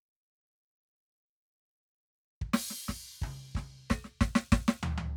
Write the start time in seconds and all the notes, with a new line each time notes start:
2.41 kick
2.53 snare, crash
2.70 snare
2.88 kick, snare
3.22 kick, mid tom
3.55 kick, snare, mid tom
3.90 kick, snare, percussion
4.04 snare
4.21 kick, snare
4.35 snare
4.52 kick, snare
4.68 snare
4.80 kick, floor tom
4.98 floor tom